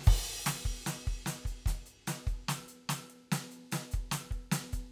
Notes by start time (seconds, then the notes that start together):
0.01 snare, hi-hat pedal
0.07 kick, snare, crash
0.47 closed hi-hat, snare
0.66 kick, closed hi-hat
0.87 closed hi-hat, snare
1.07 closed hi-hat, kick
1.27 closed hi-hat, snare
1.46 closed hi-hat, kick
1.66 open hi-hat, kick, snare, hi-hat pedal
1.76 kick
1.86 closed hi-hat
2.08 closed hi-hat, snare
2.27 closed hi-hat, kick
2.49 closed hi-hat, snare
2.69 closed hi-hat
2.90 closed hi-hat, snare
3.10 closed hi-hat
3.32 closed hi-hat, snare
3.52 closed hi-hat
3.72 closed hi-hat, snare
3.92 closed hi-hat, kick
4.12 closed hi-hat, snare
4.31 kick, closed hi-hat
4.52 closed hi-hat, snare
4.73 closed hi-hat, kick